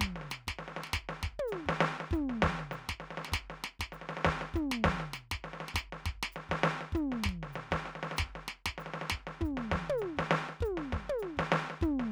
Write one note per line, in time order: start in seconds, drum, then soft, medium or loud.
0.01 kick soft
0.01 snare loud
0.16 snare soft
0.21 snare soft
0.27 snare soft
0.27 hi-hat pedal medium
0.32 snare medium
0.47 kick soft
0.47 snare loud
0.59 snare soft
0.68 snare soft
0.77 snare medium
0.84 snare medium
0.87 snare soft
0.93 kick soft
0.93 snare loud
0.93 hi-hat pedal medium
1.09 snare medium
1.23 kick soft
1.23 snare medium
1.31 kick soft
1.39 high tom loud
1.48 hi-hat pedal medium
1.53 snare medium
1.66 kick soft
1.66 snare loud
1.81 snare loud
2.00 snare medium
2.11 kick soft
2.11 floor tom loud
2.11 hi-hat pedal medium
2.18 kick soft
2.21 kick soft
2.30 snare soft
2.42 kick soft
2.42 snare loud
2.59 snare soft
2.71 snare medium
2.71 hi-hat pedal medium
2.89 kick soft
2.89 snare loud
3.00 snare soft
3.11 snare soft
3.18 snare medium
3.25 snare medium
3.28 kick soft
3.28 snare soft
3.33 snare loud
3.33 hi-hat pedal medium
3.50 snare soft
3.64 snare medium
3.80 kick soft
3.80 snare loud
3.92 snare soft
3.92 hi-hat pedal soft
4.02 snare soft
4.09 snare medium
4.17 snare medium
4.25 kick soft
4.25 snare loud
4.41 snare medium
4.54 kick soft
4.54 floor tom loud
4.54 hi-hat pedal soft
4.60 kick soft
4.72 snare loud
4.84 kick soft
4.84 snare loud
4.92 kick soft
5.00 snare soft
5.14 snare medium
5.14 hi-hat pedal medium
5.32 kick soft
5.32 snare loud
5.44 snare soft
5.54 snare soft
5.60 snare medium
5.68 snare medium
5.74 kick soft
5.74 snare loud
5.74 hi-hat pedal medium
5.93 snare soft
6.06 kick soft
6.06 snare medium
6.15 kick soft
6.23 snare loud
6.32 hi-hat pedal medium
6.36 snare medium
6.49 kick soft
6.49 snare medium
6.64 snare loud
6.81 snare soft
6.93 kick soft
6.93 floor tom loud
6.93 hi-hat pedal medium
7.12 snare soft
7.24 kick soft
7.24 snare loud
7.29 kick soft
7.29 snare soft
7.35 kick soft
7.43 snare soft
7.53 snare medium
7.53 hi-hat pedal soft
7.71 kick soft
7.71 snare loud
7.86 snare soft
7.95 snare soft
8.03 snare medium
8.11 snare medium
8.17 kick soft
8.17 snare loud
8.17 hi-hat pedal medium
8.25 kick soft
8.35 snare soft
8.48 snare medium
8.66 kick soft
8.66 snare loud
8.78 snare soft
8.78 hi-hat pedal medium
8.86 snare soft
8.94 snare medium
9.02 snare medium
9.10 kick soft
9.10 snare loud
9.27 snare medium
9.40 kick soft
9.40 floor tom medium
9.45 kick soft
9.45 hi-hat pedal medium
9.51 kick soft
9.57 snare medium
9.72 kick soft
9.72 snare medium
9.80 kick soft
9.89 high tom loud
9.98 hi-hat pedal medium
10.02 snare soft
10.17 kick soft
10.17 snare medium
10.31 snare loud
10.49 snare soft
10.61 kick soft
10.61 mid tom loud
10.65 kick soft
10.65 hi-hat pedal medium
10.70 kick soft
10.77 snare medium
10.93 kick soft
10.93 snare medium
11.02 kick soft
11.09 high tom loud
11.19 hi-hat pedal medium
11.23 snare soft
11.37 kick soft
11.37 snare loud
11.52 snare loud
11.70 snare soft
11.82 kick soft
11.82 floor tom loud
11.82 hi-hat pedal soft
11.88 kick soft
11.91 kick soft
12.00 snare soft